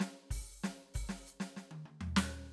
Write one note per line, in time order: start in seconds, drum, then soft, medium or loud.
0.00 snare medium
0.31 open hi-hat medium
0.31 kick soft
0.64 snare medium
0.94 open hi-hat medium
0.94 kick soft
1.09 snare medium
1.27 hi-hat pedal medium
1.40 snare medium
1.57 snare soft
1.71 high tom medium
1.86 high tom soft
2.01 floor tom medium
2.17 snare loud